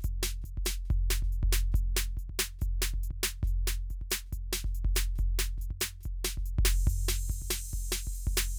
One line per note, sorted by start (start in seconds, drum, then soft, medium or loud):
0.01 closed hi-hat medium
0.01 snare soft
0.01 hi-hat pedal soft
0.05 kick medium
0.23 closed hi-hat medium
0.23 snare loud
0.42 closed hi-hat soft
0.42 kick soft
0.42 snare soft
0.58 kick medium
0.66 closed hi-hat medium
0.66 snare loud
0.86 snare soft
0.91 closed hi-hat soft
0.91 kick medium
1.11 closed hi-hat medium
1.11 snare loud
1.23 kick soft
1.23 snare soft
1.33 closed hi-hat soft
1.44 kick medium
1.53 closed hi-hat loud
1.53 snare loud
1.72 closed hi-hat medium
1.72 kick medium
1.72 snare soft
1.97 closed hi-hat medium
1.97 snare loud
2.18 kick soft
2.18 closed hi-hat soft
2.30 kick soft
2.39 closed hi-hat medium
2.39 snare loud
2.59 closed hi-hat medium
2.59 kick medium
2.59 snare soft
2.82 closed hi-hat medium
2.82 snare loud
2.94 kick soft
3.04 closed hi-hat medium
3.11 kick soft
3.24 closed hi-hat loud
3.24 snare loud
3.44 kick medium
3.44 snare soft
3.48 closed hi-hat soft
3.68 closed hi-hat loud
3.68 snare medium
3.91 closed hi-hat soft
3.91 kick soft
4.02 kick soft
4.11 closed hi-hat medium
4.11 snare loud
4.27 snare soft
4.33 closed hi-hat medium
4.33 kick medium
4.53 closed hi-hat medium
4.53 snare loud
4.65 kick medium
4.65 snare soft
4.75 closed hi-hat medium
4.85 kick medium
4.96 closed hi-hat medium
4.96 snare loud
5.16 closed hi-hat soft
5.16 kick medium
5.16 snare soft
5.39 closed hi-hat medium
5.39 snare loud
5.58 closed hi-hat medium
5.58 kick soft
5.58 snare soft
5.71 kick soft
5.81 closed hi-hat medium
5.81 snare loud
6.01 closed hi-hat medium
6.01 snare soft
6.06 kick medium
6.25 closed hi-hat medium
6.25 snare loud
6.38 kick soft
6.38 snare soft
6.46 closed hi-hat medium
6.59 kick loud
6.66 open hi-hat loud
6.66 snare loud
6.87 open hi-hat medium
6.87 kick loud
6.87 snare soft
7.09 open hi-hat loud
7.09 snare loud
7.29 open hi-hat medium
7.29 kick medium
7.29 snare soft
7.42 kick soft
7.51 open hi-hat loud
7.51 snare loud
7.74 kick medium
7.92 open hi-hat medium
7.92 snare loud
8.08 kick soft
8.13 open hi-hat medium
8.13 snare soft
8.28 kick medium
8.37 open hi-hat loud
8.37 snare loud